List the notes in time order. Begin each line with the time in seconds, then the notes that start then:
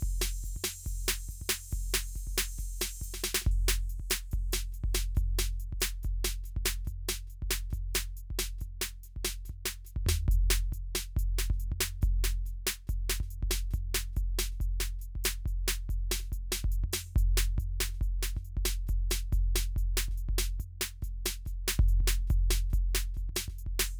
0.01 open hi-hat, kick, snare
0.22 open hi-hat, snare
0.44 open hi-hat, kick, snare
0.57 kick
0.64 open hi-hat, snare
0.85 open hi-hat, kick, snare
1.08 open hi-hat, snare
1.29 open hi-hat, kick
1.42 kick
1.50 open hi-hat, snare
1.72 open hi-hat, kick, snare
1.94 open hi-hat, snare
2.16 open hi-hat, kick, snare
2.27 kick
2.38 open hi-hat, snare
2.58 open hi-hat, kick, snare
2.81 open hi-hat, snare
2.97 snare
3.02 open hi-hat, kick
3.14 snare
3.20 hi-hat pedal
3.24 snare
3.35 snare
3.42 snare
3.47 kick
3.52 crash
3.69 closed hi-hat, snare
3.90 closed hi-hat
4.00 kick
4.10 closed hi-hat, snare
4.32 closed hi-hat, kick, snare
4.53 closed hi-hat, snare
4.72 closed hi-hat, snare
4.84 kick
4.95 closed hi-hat, snare
5.15 closed hi-hat, kick, snare
5.39 closed hi-hat, snare
5.53 snare
5.60 closed hi-hat
5.73 kick
5.81 closed hi-hat, snare
6.03 closed hi-hat, kick, snare
6.25 closed hi-hat, snare
6.44 closed hi-hat, snare
6.57 kick
6.66 closed hi-hat, snare
6.85 closed hi-hat, kick, snare
7.09 closed hi-hat, snare
7.27 closed hi-hat, snare
7.43 kick
7.51 closed hi-hat, snare
7.71 closed hi-hat, kick, snare
7.95 closed hi-hat, snare
8.17 closed hi-hat
8.31 kick
8.39 closed hi-hat, snare
8.59 closed hi-hat, kick, snare
8.82 closed hi-hat, snare
9.04 closed hi-hat, snare
9.17 kick
9.25 closed hi-hat, snare
9.45 closed hi-hat, snare
9.50 kick
9.66 closed hi-hat, snare
9.85 closed hi-hat, snare
9.97 kick
10.07 snare, floor tom
10.29 closed hi-hat, kick
10.51 closed hi-hat, snare
10.72 closed hi-hat, kick, snare
10.95 closed hi-hat, snare
11.17 closed hi-hat, kick, snare
11.39 closed hi-hat, snare
11.51 kick, snare
11.60 closed hi-hat
11.72 kick
11.81 closed hi-hat, snare
12.02 closed hi-hat, kick, snare
12.24 closed hi-hat, snare
12.46 closed hi-hat, snare
12.67 closed hi-hat, snare
12.87 closed hi-hat, kick, snare
13.10 closed hi-hat, snare
13.21 kick, snare
13.31 closed hi-hat
13.43 kick
13.51 closed hi-hat, snare
13.71 closed hi-hat, kick, snare
13.95 closed hi-hat, snare
14.13 closed hi-hat, kick, snare
14.39 closed hi-hat, snare
14.52 snare
14.61 closed hi-hat, kick
14.81 closed hi-hat, snare
14.99 closed hi-hat, snare
15.16 kick
15.24 closed hi-hat, snare
15.46 closed hi-hat, kick
15.68 closed hi-hat, snare
15.90 closed hi-hat, kick
16.12 closed hi-hat, snare
16.20 snare
16.25 snare
16.32 closed hi-hat, kick
16.52 closed hi-hat, snare
16.65 kick
16.72 closed hi-hat
16.84 kick
16.93 open hi-hat, snare
17.07 snare
17.16 closed hi-hat, kick
17.38 closed hi-hat, snare
17.59 closed hi-hat, kick
17.81 closed hi-hat, snare
17.89 snare
17.95 snare
18.02 kick, closed hi-hat
18.23 closed hi-hat, snare
18.31 snare
18.36 kick, snare
18.37 snare
18.45 closed hi-hat
18.57 kick
18.66 closed hi-hat, snare
18.87 closed hi-hat, kick, snare
19.11 closed hi-hat, snare
19.32 closed hi-hat, kick, snare
19.56 closed hi-hat, snare
19.77 closed hi-hat, kick
19.97 closed hi-hat, snare
20.09 kick, snare
20.18 closed hi-hat
20.29 kick
20.39 closed hi-hat, snare
20.60 closed hi-hat, kick
20.81 closed hi-hat, snare
21.02 closed hi-hat, kick, snare
21.26 closed hi-hat, snare
21.46 closed hi-hat, kick, snare
21.68 closed hi-hat, snare
21.80 kick, snare
21.89 closed hi-hat
22.01 kick
22.08 closed hi-hat, snare
22.28 closed hi-hat, kick, snare
22.51 closed hi-hat, snare
22.70 closed hi-hat, kick, snare
22.95 closed hi-hat, snare
23.15 kick, snare, closed hi-hat
23.30 kick
23.36 closed hi-hat, snare
23.48 kick, snare
23.59 closed hi-hat
23.67 kick
23.80 open hi-hat, snare